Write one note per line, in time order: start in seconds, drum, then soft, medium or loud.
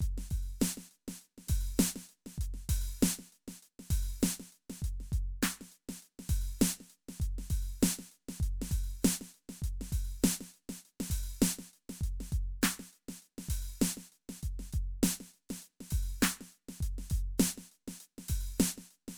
0.01 closed hi-hat medium
0.01 kick medium
0.18 snare soft
0.31 kick soft
0.31 open hi-hat medium
0.60 closed hi-hat medium
0.60 snare loud
0.60 hi-hat pedal medium
0.78 snare soft
0.91 closed hi-hat soft
1.08 snare medium
1.08 closed hi-hat soft
1.22 closed hi-hat soft
1.38 snare soft
1.48 kick medium
1.48 snare soft
1.48 open hi-hat loud
1.77 closed hi-hat loud
1.77 snare loud
1.77 hi-hat pedal medium
1.96 snare soft
2.09 closed hi-hat soft
2.27 snare soft
2.27 closed hi-hat soft
2.38 closed hi-hat medium
2.38 kick soft
2.54 snare soft
2.69 kick medium
2.69 open hi-hat loud
3.01 closed hi-hat medium
3.01 snare loud
3.01 hi-hat pedal medium
3.19 snare soft
3.33 closed hi-hat soft
3.48 snare soft
3.48 closed hi-hat soft
3.63 closed hi-hat soft
3.80 snare soft
3.91 kick medium
3.91 open hi-hat loud
4.20 closed hi-hat medium
4.20 snare loud
4.20 hi-hat pedal medium
4.40 snare soft
4.53 closed hi-hat soft
4.70 snare soft
4.70 closed hi-hat soft
4.82 closed hi-hat medium
4.82 kick soft
5.00 snare soft
5.12 kick medium
5.12 open hi-hat medium
5.42 closed hi-hat loud
5.42 snare loud
5.42 hi-hat pedal medium
5.61 snare soft
5.72 closed hi-hat soft
5.89 snare medium
5.89 closed hi-hat soft
6.03 closed hi-hat soft
6.19 snare soft
6.30 kick medium
6.30 open hi-hat loud
6.59 closed hi-hat loud
6.59 snare loud
6.59 hi-hat pedal medium
6.81 snare soft
6.90 closed hi-hat soft
7.09 snare soft
7.09 closed hi-hat soft
7.20 closed hi-hat medium
7.20 kick medium
7.39 snare soft
7.50 open hi-hat medium
7.50 kick medium
7.81 closed hi-hat loud
7.81 snare loud
7.81 hi-hat pedal medium
7.99 snare soft
8.12 closed hi-hat soft
8.29 snare soft
8.29 closed hi-hat soft
8.40 closed hi-hat medium
8.40 kick medium
8.62 snare medium
8.72 kick medium
8.72 open hi-hat medium
9.03 closed hi-hat loud
9.03 snare loud
9.03 hi-hat pedal medium
9.21 snare soft
9.35 closed hi-hat soft
9.49 snare soft
9.49 closed hi-hat soft
9.62 closed hi-hat medium
9.62 kick soft
9.81 snare soft
9.93 open hi-hat medium
9.93 kick medium
10.22 closed hi-hat loud
10.22 snare loud
10.22 hi-hat pedal medium
10.41 snare soft
10.54 closed hi-hat soft
10.70 snare medium
10.70 closed hi-hat soft
10.86 closed hi-hat soft
11.01 snare medium
11.11 open hi-hat loud
11.11 kick soft
11.41 closed hi-hat loud
11.41 snare loud
11.41 hi-hat pedal medium
11.59 snare soft
11.74 closed hi-hat soft
11.90 snare soft
11.90 closed hi-hat soft
12.01 closed hi-hat medium
12.01 kick soft
12.21 snare soft
12.33 kick medium
12.33 open hi-hat medium
12.62 closed hi-hat loud
12.62 snare loud
12.62 hi-hat pedal medium
12.80 snare soft
12.93 closed hi-hat soft
13.09 snare soft
13.09 closed hi-hat soft
13.22 closed hi-hat soft
13.38 snare soft
13.49 open hi-hat medium
13.49 kick soft
13.80 closed hi-hat medium
13.80 snare loud
13.80 hi-hat pedal medium
13.97 snare soft
14.12 closed hi-hat soft
14.29 snare soft
14.29 closed hi-hat soft
14.43 closed hi-hat medium
14.43 kick soft
14.60 snare soft
14.73 kick medium
14.73 open hi-hat medium
15.03 open hi-hat loud
15.03 snare loud
15.03 hi-hat pedal medium
15.21 snare soft
15.34 closed hi-hat soft
15.50 snare medium
15.50 closed hi-hat soft
15.62 closed hi-hat medium
15.81 snare soft
15.91 open hi-hat medium
15.91 kick medium
16.21 closed hi-hat loud
16.21 snare loud
16.21 hi-hat pedal medium
16.41 snare soft
16.53 closed hi-hat soft
16.69 snare soft
16.69 closed hi-hat soft
16.81 closed hi-hat medium
16.81 kick soft
16.99 snare soft
17.10 open hi-hat medium
17.10 kick medium
17.38 closed hi-hat loud
17.38 snare loud
17.38 hi-hat pedal medium
17.58 snare soft
17.72 closed hi-hat soft
17.88 snare soft
17.88 closed hi-hat soft
18.01 closed hi-hat medium
18.18 snare soft
18.29 open hi-hat medium
18.29 kick medium
18.58 closed hi-hat medium
18.58 snare loud
18.58 hi-hat pedal medium
18.78 snare soft
18.91 closed hi-hat soft
19.08 snare soft
19.08 closed hi-hat soft